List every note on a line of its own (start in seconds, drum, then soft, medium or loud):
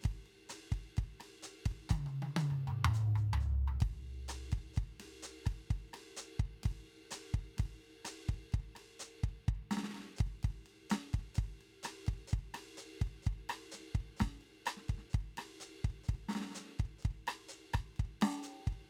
0.01 snare soft
0.01 hi-hat pedal soft
0.01 ride medium
0.05 kick soft
0.11 kick soft
0.26 ride soft
0.49 cross-stick soft
0.49 snare soft
0.49 hi-hat pedal medium
0.49 ride medium
0.72 kick soft
0.72 ride soft
0.97 kick soft
0.97 ride soft
1.03 kick soft
1.20 cross-stick soft
1.20 ride medium
1.43 hi-hat pedal medium
1.43 ride soft
1.66 kick soft
1.66 ride medium
1.71 kick soft
1.89 kick soft
1.89 hi-hat pedal loud
1.89 high tom medium
1.92 high tom loud
1.98 kick soft
2.06 hi-hat pedal soft
2.06 high tom medium
2.22 high tom medium
2.36 hi-hat pedal medium
2.36 high tom loud
2.50 mid tom soft
2.67 mid tom medium
2.85 mid tom loud
2.91 hi-hat pedal medium
2.91 mid tom soft
3.00 floor tom soft
3.16 floor tom medium
3.16 hi-hat pedal soft
3.33 floor tom loud
3.40 hi-hat pedal soft
3.68 floor tom medium
3.81 kick soft
3.81 ride medium
3.93 kick soft
4.28 cross-stick soft
4.28 hi-hat pedal medium
4.28 ride medium
4.52 kick soft
4.52 ride soft
4.58 kick soft
4.73 kick soft
4.73 hi-hat pedal soft
4.73 ride soft
4.83 kick soft
5.00 snare soft
5.00 ride medium
5.23 hi-hat pedal medium
5.23 ride soft
5.44 kick soft
5.44 cross-stick soft
5.44 hi-hat pedal soft
5.44 ride medium
5.52 kick soft
5.70 kick soft
5.70 ride soft
5.77 snare soft
5.93 cross-stick soft
5.93 snare soft
5.93 ride medium
6.17 hi-hat pedal medium
6.39 kick soft
6.45 kick soft
6.52 snare soft
6.63 kick soft
6.63 snare soft
6.63 ride medium
6.71 kick soft
7.11 cross-stick soft
7.11 snare soft
7.11 hi-hat pedal medium
7.11 ride medium
7.34 kick soft
7.39 kick soft
7.57 kick soft
7.57 snare soft
7.57 ride medium
7.65 kick soft
8.04 cross-stick soft
8.04 snare soft
8.04 hi-hat pedal medium
8.04 ride medium
8.29 kick soft
8.29 ride soft
8.34 kick soft
8.52 kick soft
8.52 ride soft
8.59 kick soft
8.75 cross-stick soft
8.75 ride medium
8.99 hi-hat pedal medium
9.23 kick soft
9.23 ride soft
9.29 kick soft
9.48 kick soft
9.48 ride soft
9.54 kick soft
9.71 snare medium
9.71 hi-hat pedal medium
9.71 ride medium
9.77 snare medium
9.83 snare soft
9.88 snare soft
9.94 snare soft
9.94 ride soft
9.99 snare soft
10.05 snare soft
10.10 snare soft
10.14 snare soft
10.14 hi-hat pedal soft
10.19 kick soft
10.19 snare soft
10.19 ride medium
10.26 kick soft
10.26 snare soft
10.31 snare soft
10.43 kick soft
10.43 ride medium
10.50 kick soft
10.66 ride soft
10.90 snare medium
10.90 hi-hat pedal medium
10.90 ride medium
11.13 kick soft
11.13 ride soft
11.18 kick soft
11.18 snare soft
11.24 snare soft
11.34 kick soft
11.34 hi-hat pedal medium
11.34 ride medium
11.44 kick soft
11.61 ride soft
11.83 cross-stick medium
11.83 hi-hat pedal medium
11.83 ride medium
12.07 kick soft
12.07 snare soft
12.07 ride soft
12.13 kick soft
12.13 snare soft
12.18 snare soft
12.27 hi-hat pedal medium
12.27 ride soft
12.33 kick soft
12.38 kick soft
12.54 cross-stick medium
12.54 ride medium
12.77 hi-hat pedal medium
12.77 ride soft
13.01 kick soft
13.01 ride soft
13.07 kick soft
13.22 hi-hat pedal soft
13.22 ride soft
13.27 kick soft
13.32 kick soft
13.49 cross-stick medium
13.49 ride medium
13.72 snare soft
13.72 hi-hat pedal medium
13.72 ride soft
13.80 snare soft
13.95 kick soft
13.95 ride soft
14.00 kick soft
14.17 snare medium
14.17 hi-hat pedal soft
14.17 ride medium
14.22 kick soft
14.27 kick soft
14.41 ride soft
14.66 cross-stick medium
14.66 hi-hat pedal medium
14.66 ride medium
14.77 snare soft
14.89 kick soft
14.89 ride soft
14.94 kick soft
14.94 snare soft
15.04 snare soft
15.10 hi-hat pedal soft
15.10 ride soft
15.14 kick soft
15.20 kick soft
15.37 cross-stick medium
15.37 ride medium
15.60 hi-hat pedal medium
15.60 ride soft
15.67 snare soft
15.84 kick soft
15.84 ride soft
15.90 kick soft
16.03 hi-hat pedal soft
16.09 kick soft
16.09 ride soft
16.14 kick soft
16.29 snare medium
16.33 snare soft
16.33 ride medium
16.40 snare soft
16.45 snare soft
16.50 snare soft
16.55 snare soft
16.55 hi-hat pedal medium
16.55 ride soft
16.65 snare soft
16.69 snare soft
16.72 snare soft
16.75 snare soft
16.77 kick soft
16.77 snare soft
16.77 ride soft
16.82 kick soft
16.82 snare soft
16.87 snare soft
16.98 hi-hat pedal soft
17.03 kick soft
17.03 ride soft
17.10 kick soft
17.27 cross-stick medium
17.27 ride medium
17.48 hi-hat pedal medium
17.48 ride soft
17.74 kick soft
17.74 cross-stick medium
17.74 ride soft
17.80 kick soft
17.80 snare soft
17.96 kick soft
17.96 ride soft
18.05 kick soft
18.21 snare loud
18.21 ride medium
18.30 cross-stick soft
18.43 hi-hat pedal medium
18.43 ride soft
18.60 snare soft
18.67 kick soft
18.67 ride soft
18.72 kick soft